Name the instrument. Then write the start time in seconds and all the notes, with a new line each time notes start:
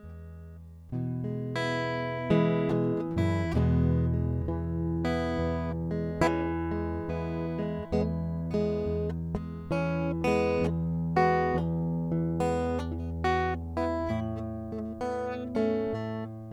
acoustic guitar
0.00 G#3
0.06 E2
0.94 B2 E3
1.25 G#3
1.52 B3
1.56 E4
2.31 E3 G#3
2.70 B2 E3 G#3
3.18 F#2 E3 G#3 E4
3.55 E2 B2 E3 G#3 B3
4.14 G#3
4.43 B2
4.50 E3
5.05 B3 E4
5.40 E2
5.92 G#3
6.22 E3
6.28 C#4
6.72 G#3
7.10 E2 B3 E4
7.60 G#3
7.93 E2 G#3 B3
8.51 G#3 B3
8.88 E2
9.35 G#3
9.72 E3 C#4
10.25 B3
10.29 G#3
10.63 E2
11.17 G#3 B3
11.26 F#4
11.54 E2
12.12 E3
12.39 B3
12.93 E3
13.01 B3
13.25 B3 F#4
13.77 B3 E4
14.11 A2
14.73 A3
15.02 B3
15.56 A3 C#4
15.94 A2